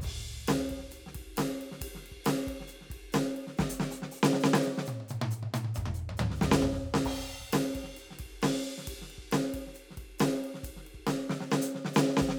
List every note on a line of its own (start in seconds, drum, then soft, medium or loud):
0.01 kick medium
0.01 hi-hat pedal medium
0.01 floor tom soft
0.01 ride loud
0.37 kick soft
0.48 snare loud
0.48 hi-hat pedal medium
0.48 ride loud
0.70 kick soft
0.70 ride medium
0.77 kick soft
0.77 snare soft
0.91 hi-hat pedal medium
0.91 ride medium
1.07 snare soft
1.15 kick soft
1.15 ride medium
1.22 kick soft
1.36 snare medium
1.36 hi-hat pedal medium
1.36 ride loud
1.61 ride medium
1.72 snare soft
1.81 kick soft
1.81 hi-hat pedal medium
1.81 ride loud
1.88 kick soft
1.95 snare soft
2.06 ride medium
2.12 kick soft
2.17 kick soft
2.25 snare loud
2.25 hi-hat pedal medium
2.25 ride loud
2.47 kick soft
2.47 ride medium
2.54 kick soft
2.61 snare soft
2.68 hi-hat pedal medium
2.68 ride medium
2.81 snare soft
2.90 kick soft
2.90 ride medium
2.97 kick soft
3.12 snare loud
3.12 hi-hat pedal medium
3.12 ride medium
3.37 ride medium
3.47 snare soft
3.58 kick soft
3.58 snare loud
3.58 hi-hat pedal soft
3.66 closed hi-hat loud
3.66 kick soft
3.80 snare medium
3.91 open hi-hat medium
3.95 hi-hat pedal medium
4.02 snare medium
4.12 open hi-hat medium
4.17 closed hi-hat soft
4.17 hi-hat pedal soft
4.23 snare loud
4.34 snare medium
4.40 snare loud
4.40 hi-hat pedal medium
4.54 snare loud
4.63 snare soft
4.63 hi-hat pedal medium
4.78 snare medium
4.86 hi-hat pedal medium
4.86 high tom loud
5.00 high tom medium
5.09 hi-hat pedal medium
5.09 high tom loud
5.22 high tom loud
5.31 hi-hat pedal medium
5.31 high tom soft
5.43 high tom medium
5.54 hi-hat pedal medium
5.54 high tom loud
5.65 high tom medium
5.75 kick medium
5.75 hi-hat pedal medium
5.75 mid tom loud
5.85 kick soft
5.85 mid tom medium
5.94 hi-hat pedal medium
5.99 floor tom soft
6.10 floor tom medium
6.17 hi-hat pedal medium
6.17 floor tom loud
6.31 snare medium
6.36 kick soft
6.36 hi-hat pedal soft
6.42 snare loud
6.46 kick soft
6.52 snare loud
6.60 kick medium
6.60 hi-hat pedal soft
6.60 mid tom loud
6.73 snare soft
6.85 mid tom soft
6.94 snare loud
7.04 kick medium
7.04 hi-hat pedal soft
7.04 crash loud
7.16 snare soft
7.19 snare soft
7.22 snare soft
7.42 kick soft
7.53 snare loud
7.53 hi-hat pedal medium
7.53 ride loud
7.75 kick soft
7.75 ride medium
7.81 kick soft
7.81 snare soft
7.97 hi-hat pedal medium
7.97 ride medium
8.11 snare soft
8.19 kick soft
8.19 ride medium
8.26 kick soft
8.42 snare loud
8.42 hi-hat pedal soft
8.42 ride loud
8.65 ride soft
8.78 snare soft
8.86 kick soft
8.86 hi-hat pedal soft
8.86 ride loud
8.94 kick soft
8.97 kick soft
9.02 snare soft
9.10 ride soft
9.18 kick soft
9.32 snare loud
9.32 hi-hat pedal medium
9.32 ride medium
9.54 kick soft
9.54 ride medium
9.60 kick soft
9.67 snare soft
9.75 hi-hat pedal soft
9.75 ride medium
9.91 snare soft
9.97 kick soft
9.97 ride medium
10.19 snare loud
10.19 hi-hat pedal medium
10.19 ride loud
10.44 ride medium
10.55 snare soft
10.64 kick soft
10.64 hi-hat pedal medium
10.64 ride medium
10.70 kick soft
10.77 snare soft
10.87 ride soft
10.95 kick soft
11.00 kick soft
11.07 snare medium
11.07 hi-hat pedal medium
11.07 ride medium
11.30 snare medium
11.41 snare medium
11.51 snare loud
11.51 hi-hat pedal medium
11.62 closed hi-hat loud
11.75 snare soft
11.85 snare medium
11.94 snare loud
11.94 hi-hat pedal medium
12.08 snare soft
12.17 snare loud
12.21 kick soft
12.21 hi-hat pedal medium
12.28 kick soft
12.28 snare medium